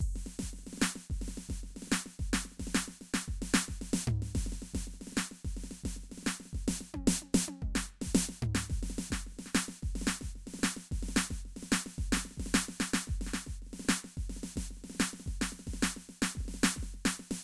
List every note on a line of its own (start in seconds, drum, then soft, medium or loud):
0.01 kick medium
0.01 crash medium
0.15 kick soft
0.15 snare soft
0.25 snare soft
0.25 hi-hat pedal soft
0.40 kick soft
0.40 snare medium
0.54 snare soft
0.59 snare soft
0.64 snare soft
0.67 snare soft
0.73 snare soft
0.78 snare soft
0.78 hi-hat pedal soft
0.82 snare loud
0.96 snare soft
1.11 kick soft
1.11 snare soft
1.17 kick soft
1.22 snare soft
1.28 snare soft
1.34 snare soft
1.34 hi-hat pedal soft
1.50 kick soft
1.50 snare soft
1.64 snare soft
1.71 snare soft
1.75 snare soft
1.83 snare soft
1.88 snare soft
1.88 hi-hat pedal soft
1.92 snare loud
2.06 snare soft
2.20 kick soft
2.20 snare soft
2.26 kick soft
2.34 snare loud
2.43 snare soft
2.43 hi-hat pedal soft
2.52 snare soft
2.58 kick soft
2.58 snare soft
2.60 snare soft
2.67 snare soft
2.75 snare loud
2.88 snare soft
3.01 snare soft
3.01 hi-hat pedal soft
3.14 snare medium
3.28 kick soft
3.28 snare soft
3.34 kick soft
3.42 snare medium
3.52 snare loud
3.52 hi-hat pedal soft
3.69 kick soft
3.69 snare soft
3.82 snare soft
3.94 snare loud
4.07 floor tom loud
4.07 hi-hat pedal soft
4.22 snare soft
4.35 kick soft
4.35 snare medium
4.42 kick soft
4.47 snare soft
4.53 snare soft
4.58 hi-hat pedal soft
4.62 snare soft
4.74 kick soft
4.74 snare medium
4.80 kick soft
4.87 snare soft
4.94 snare soft
5.01 snare soft
5.07 snare soft
5.13 snare soft
5.13 hi-hat pedal soft
5.17 snare medium
5.32 snare soft
5.45 kick soft
5.45 snare soft
5.51 kick soft
5.57 snare soft
5.64 snare soft
5.64 hi-hat pedal soft
5.71 snare soft
5.84 kick soft
5.84 snare medium
5.97 snare soft
6.04 snare soft
6.10 snare soft
6.12 snare soft
6.18 snare soft
6.23 snare soft
6.23 hi-hat pedal soft
6.27 snare medium
6.40 snare soft
6.46 snare soft
6.54 kick soft
6.54 snare soft
6.59 kick soft
6.68 snare medium
6.77 hi-hat pedal soft
6.81 snare soft
6.95 kick soft
6.95 high tom medium
7.08 snare loud
7.22 high tom soft
7.33 snare loud
7.33 hi-hat pedal soft
7.49 high tom medium
7.62 kick soft
7.62 mid tom soft
7.69 kick soft
7.76 snare medium
7.86 hi-hat pedal soft
8.02 snare medium
8.06 kick soft
8.15 snare loud
8.29 snare soft
8.41 floor tom loud
8.41 hi-hat pedal soft
8.55 snare medium
8.70 kick soft
8.70 snare soft
8.78 kick soft
8.83 snare soft
8.90 snare soft
8.96 snare medium
8.96 hi-hat pedal soft
9.11 kick soft
9.11 snare medium
9.27 snare soft
9.33 snare soft
9.39 snare soft
9.46 snare soft
9.53 snare loud
9.53 hi-hat pedal medium
9.69 snare soft
9.83 kick soft
9.83 snare soft
9.90 kick soft
9.96 snare soft
10.02 snare soft
10.07 snare loud
10.07 hi-hat pedal soft
10.21 kick soft
10.21 snare soft
10.29 kick soft
10.36 snare soft
10.42 snare soft
10.47 snare soft
10.54 snare soft
10.59 snare soft
10.64 snare loud
10.64 hi-hat pedal soft
10.77 snare soft
10.92 kick soft
10.92 snare soft
10.98 kick soft
11.03 snare soft
11.09 snare soft
11.17 snare loud
11.17 hi-hat pedal soft
11.31 kick soft
11.31 snare soft
11.46 snare soft
11.52 snare soft
11.57 snare soft
11.63 snare soft
11.72 snare loud
11.72 hi-hat pedal soft
11.86 snare soft
11.99 kick soft
11.99 snare soft
12.05 kick soft
12.13 snare loud
12.17 snare soft
12.24 snare soft
12.24 hi-hat pedal soft
12.31 snare soft
12.37 kick soft
12.37 snare soft
12.40 kick soft
12.40 snare soft
12.46 snare soft
12.55 snare loud
12.69 snare soft
12.80 snare medium
12.80 hi-hat pedal soft
12.94 snare loud
13.08 kick soft
13.08 snare soft
13.16 kick soft
13.21 snare soft
13.27 snare soft
13.34 snare medium
13.34 hi-hat pedal soft
13.47 kick soft
13.47 snare soft
13.62 snare soft
13.67 snare soft
13.71 snare soft
13.74 snare soft
13.80 snare soft
13.85 snare soft
13.89 snare loud
13.89 hi-hat pedal soft
14.05 snare soft
14.18 kick soft
14.18 snare soft
14.30 snare soft
14.37 snare soft
14.43 snare medium
14.43 hi-hat pedal soft
14.56 kick soft
14.56 snare medium
14.71 snare soft
14.77 snare soft
14.82 snare soft
14.84 snare soft
14.90 snare soft
14.95 snare soft
14.95 hi-hat pedal soft
15.00 snare loud
15.14 snare soft
15.20 snare soft
15.27 kick soft
15.27 snare soft
15.42 snare medium
15.51 snare soft
15.51 hi-hat pedal soft
15.60 snare soft
15.67 kick soft
15.67 snare soft
15.74 snare soft
15.83 snare loud
15.97 snare soft
16.09 snare soft
16.09 hi-hat pedal soft
16.22 snare loud
16.35 kick soft
16.35 snare soft
16.41 snare soft
16.45 kick soft
16.45 snare soft
16.49 snare soft
16.55 snare soft
16.61 snare loud
16.61 hi-hat pedal soft
16.77 kick soft
16.77 snare soft
16.83 snare soft
16.94 snare soft
17.06 snare loud
17.17 snare soft
17.17 hi-hat pedal soft
17.31 snare medium